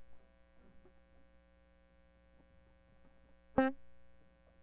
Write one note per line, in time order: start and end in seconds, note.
3.59 3.71 C4